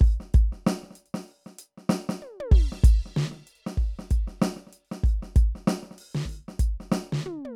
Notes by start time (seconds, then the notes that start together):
0.01 kick, open hi-hat
0.14 hi-hat pedal
0.20 snare
0.34 kick, closed hi-hat
0.53 snare
0.67 snare
0.83 snare
0.91 snare
0.96 closed hi-hat
1.06 open hi-hat
1.14 snare
1.22 hi-hat pedal
1.28 open hi-hat
1.46 snare
1.53 hi-hat pedal
1.59 closed hi-hat
1.78 snare
1.89 snare
2.09 snare
2.22 hi-hat pedal, high tom
2.40 high tom
2.52 kick, crash
2.72 snare
2.84 kick, closed hi-hat
3.06 snare
3.17 snare, hi-hat pedal
3.32 snare
3.39 hi-hat pedal
3.47 closed hi-hat
3.56 closed hi-hat
3.67 snare
3.78 kick, open hi-hat
3.99 snare
4.11 kick, closed hi-hat
4.28 snare
4.42 snare, hi-hat pedal
4.56 snare
4.67 snare
4.73 closed hi-hat
4.85 open hi-hat
4.92 snare
5.04 kick, open hi-hat
5.11 hi-hat pedal
5.23 snare
5.36 kick, closed hi-hat
5.55 snare
5.68 snare
5.83 snare
5.91 snare
5.98 open hi-hat
6.07 open hi-hat
6.15 snare
6.25 kick
6.29 open hi-hat
6.35 hi-hat pedal
6.48 snare
6.59 closed hi-hat, kick
6.80 snare
6.92 snare
6.96 hi-hat pedal
7.13 snare
7.20 hi-hat pedal
7.25 floor tom
7.45 high tom